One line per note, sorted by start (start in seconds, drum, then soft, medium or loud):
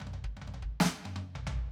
0.00 floor tom medium
0.00 high tom medium
0.07 high tom medium
0.13 floor tom medium
0.24 kick medium
0.37 high tom medium
0.42 floor tom medium
0.47 high tom medium
0.54 floor tom medium
0.62 kick medium
0.80 snare loud
0.85 snare loud
1.05 high tom loud
1.16 high tom loud
1.35 floor tom medium
1.47 floor tom loud